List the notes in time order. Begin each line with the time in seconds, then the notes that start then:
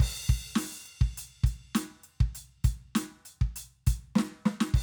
0.01 kick, crash
0.30 kick, snare
0.57 open hi-hat, snare
0.87 closed hi-hat
1.02 kick, snare
1.19 closed hi-hat
1.45 closed hi-hat, kick, snare
1.76 closed hi-hat, snare
2.05 closed hi-hat
2.21 kick, snare
2.36 closed hi-hat
2.65 closed hi-hat, kick
2.96 closed hi-hat, snare
3.26 closed hi-hat
3.42 kick
3.57 closed hi-hat
3.88 closed hi-hat, kick
4.17 snare
4.20 snare
4.47 snare
4.62 snare
4.75 kick, crash